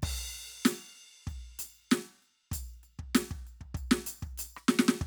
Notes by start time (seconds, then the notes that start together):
0.01 kick, crash
0.03 kick
0.66 snare, percussion
0.97 percussion
1.27 kick, percussion
1.59 percussion
1.91 snare, percussion
1.93 percussion
2.23 percussion
2.52 kick, percussion
2.84 percussion
2.99 kick
3.15 snare, percussion
3.31 kick
3.47 percussion
3.61 kick
3.75 kick, percussion
3.92 snare
4.07 percussion
4.23 kick
4.38 percussion
4.57 cross-stick
4.69 snare
4.79 snare
4.89 snare
5.02 kick